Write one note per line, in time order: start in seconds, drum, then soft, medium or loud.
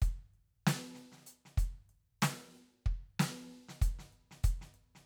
0.02 closed hi-hat soft
0.02 kick medium
0.34 closed hi-hat soft
0.67 closed hi-hat medium
0.67 snare loud
0.95 closed hi-hat soft
0.95 snare soft
1.12 snare soft
1.16 snare soft
1.19 snare soft
1.26 closed hi-hat medium
1.45 snare soft
1.57 closed hi-hat medium
1.57 kick medium
1.89 closed hi-hat soft
2.22 closed hi-hat medium
2.22 snare loud
2.54 closed hi-hat soft
2.86 kick medium
3.19 closed hi-hat medium
3.19 snare loud
3.68 snare soft
3.82 closed hi-hat medium
3.82 kick medium
3.99 snare soft
4.12 closed hi-hat soft
4.31 snare soft
4.44 closed hi-hat medium
4.44 kick medium
4.61 snare soft
4.74 closed hi-hat soft
4.95 snare soft